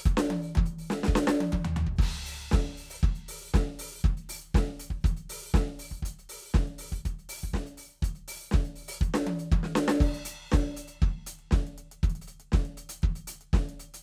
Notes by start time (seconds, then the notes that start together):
0.01 hi-hat pedal
0.06 closed hi-hat, kick
0.17 snare
0.30 high tom
0.42 open hi-hat
0.52 hi-hat pedal, high tom
0.57 kick
0.66 closed hi-hat
0.79 open hi-hat
0.90 snare
1.03 snare, hi-hat pedal
1.09 kick
1.16 snare
1.27 snare
1.41 high tom
1.50 kick, hi-hat pedal, high tom
1.65 floor tom
1.77 floor tom
1.87 kick
1.96 kick, hi-hat pedal
2.02 crash
2.26 open hi-hat
2.41 open hi-hat
2.49 snare, hi-hat pedal
2.54 kick
2.63 closed hi-hat
2.77 open hi-hat
2.90 open hi-hat
2.97 hi-hat pedal
3.03 kick, closed hi-hat
3.15 closed hi-hat
3.29 open hi-hat
3.42 open hi-hat
3.50 snare, hi-hat pedal
3.54 kick
3.68 closed hi-hat
3.79 open hi-hat
3.93 open hi-hat
4.01 kick, hi-hat pedal
4.06 closed hi-hat
4.17 closed hi-hat
4.29 open hi-hat
4.42 open hi-hat
4.51 kick, hi-hat pedal
4.55 snare
4.67 closed hi-hat
4.80 open hi-hat
4.91 kick, open hi-hat
5.02 kick, hi-hat pedal
5.06 closed hi-hat
5.17 closed hi-hat
5.30 open hi-hat
5.43 open hi-hat
5.50 kick, hi-hat pedal
5.54 snare
5.68 closed hi-hat
5.79 open hi-hat
5.91 kick, open hi-hat
5.98 hi-hat pedal
6.03 closed hi-hat, kick
6.19 open hi-hat
6.29 open hi-hat
6.41 open hi-hat
6.51 snare, hi-hat pedal
6.55 kick
6.68 closed hi-hat
6.79 open hi-hat
6.92 kick, open hi-hat
6.97 hi-hat pedal
7.05 closed hi-hat, kick
7.19 open hi-hat
7.29 open hi-hat
7.44 kick
7.51 snare, hi-hat pedal
7.67 closed hi-hat
7.78 open hi-hat
7.89 open hi-hat
8.02 closed hi-hat, kick, hi-hat pedal
8.15 closed hi-hat
8.28 open hi-hat
8.40 open hi-hat
8.49 snare, hi-hat pedal
8.54 kick
8.65 closed hi-hat
8.76 open hi-hat
8.88 open hi-hat
8.95 hi-hat pedal
9.01 closed hi-hat, kick
9.14 snare
9.27 high tom
9.39 open hi-hat
9.45 hi-hat pedal
9.52 kick, high tom
9.63 snare
9.76 snare
9.88 snare
10.01 kick, crash
10.14 closed hi-hat
10.25 closed hi-hat
10.38 open hi-hat
10.48 hi-hat pedal
10.52 kick, snare
10.64 closed hi-hat
10.77 closed hi-hat
10.88 closed hi-hat
11.02 closed hi-hat, kick
11.13 closed hi-hat
11.27 closed hi-hat
11.39 closed hi-hat
11.51 kick, snare
11.67 closed hi-hat
11.78 closed hi-hat
11.92 closed hi-hat
12.03 kick, closed hi-hat
12.10 closed hi-hat
12.16 closed hi-hat
12.22 closed hi-hat
12.28 closed hi-hat
12.40 closed hi-hat
12.52 kick, snare
12.65 closed hi-hat
12.78 closed hi-hat
12.89 closed hi-hat
13.03 kick, closed hi-hat
13.16 closed hi-hat
13.28 closed hi-hat
13.41 closed hi-hat
13.53 kick, snare
13.69 closed hi-hat
13.80 closed hi-hat
13.94 closed hi-hat